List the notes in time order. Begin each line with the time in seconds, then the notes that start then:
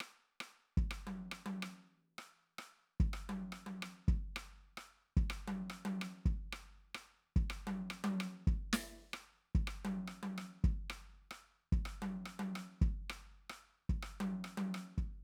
0.01 cross-stick
0.41 cross-stick
0.78 kick
0.91 cross-stick
1.07 high tom
1.32 cross-stick
1.46 high tom
1.63 cross-stick
2.19 cross-stick
2.59 cross-stick
3.01 kick
3.14 cross-stick
3.30 high tom
3.53 cross-stick
3.67 high tom
3.83 cross-stick
4.09 kick
4.37 cross-stick
4.78 cross-stick
5.17 kick
5.31 cross-stick
5.48 high tom
5.70 cross-stick
5.86 high tom
6.02 cross-stick
6.26 kick
6.53 cross-stick
6.95 cross-stick
7.37 kick
7.51 cross-stick
7.68 high tom
7.91 cross-stick
8.05 high tom
8.21 cross-stick
8.48 kick
8.74 snare
9.14 cross-stick
9.55 kick
9.68 cross-stick
9.85 high tom
10.08 cross-stick
10.24 high tom
10.39 cross-stick
10.65 kick
10.90 cross-stick
11.31 cross-stick
11.73 kick
11.86 cross-stick
12.03 high tom
12.26 cross-stick
12.40 high tom
12.56 cross-stick
12.82 kick
13.10 cross-stick
13.50 cross-stick
13.90 kick
14.03 cross-stick
14.21 high tom
14.45 cross-stick
14.58 high tom
14.75 cross-stick
14.98 kick